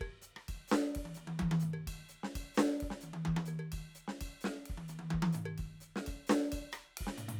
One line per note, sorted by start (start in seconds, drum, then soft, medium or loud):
0.01 kick soft
0.01 percussion loud
0.22 hi-hat pedal medium
0.36 cross-stick medium
0.48 kick soft
0.48 ride bell medium
0.68 snare loud
0.68 hi-hat pedal medium
0.95 kick soft
0.95 ride medium
1.05 high tom medium
1.14 hi-hat pedal medium
1.14 high tom soft
1.39 kick soft
1.39 high tom loud
1.47 kick soft
1.47 high tom loud
1.60 hi-hat pedal medium
1.60 mid tom soft
1.74 percussion medium
1.87 kick soft
1.87 ride bell medium
1.92 kick soft
2.09 hi-hat pedal medium
2.09 ride soft
2.24 snare medium
2.35 kick soft
2.35 ride bell medium
2.55 snare loud
2.55 hi-hat pedal medium
2.81 kick soft
2.81 ride medium
2.91 snare medium
3.01 hi-hat pedal medium
3.01 high tom soft
3.25 kick soft
3.25 high tom loud
3.37 high tom loud
3.46 hi-hat pedal medium
3.46 percussion medium
3.59 percussion medium
3.72 kick soft
3.72 ride bell medium
3.95 hi-hat pedal medium
4.08 snare medium
4.21 kick soft
4.21 ride bell medium
4.41 snare medium
4.41 hi-hat pedal medium
4.66 kick soft
4.66 ride medium
4.78 high tom medium
4.88 hi-hat pedal medium
4.88 high tom soft
4.99 high tom medium
5.11 kick soft
5.11 high tom loud
5.19 kick soft
5.19 high tom loud
5.33 hi-hat pedal medium
5.33 mid tom medium
5.46 percussion loud
5.58 kick soft
5.58 ride bell medium
5.65 kick soft
5.81 hi-hat pedal medium
5.81 ride soft
5.96 snare medium
6.07 kick soft
6.07 ride bell medium
6.14 kick soft
6.27 snare loud
6.27 hi-hat pedal medium
6.52 kick soft
6.52 ride bell medium
6.72 cross-stick medium
6.72 hi-hat pedal medium
6.97 kick soft
6.97 ride loud
7.07 snare medium
7.18 hi-hat pedal medium
7.18 mid tom medium
7.29 mid tom medium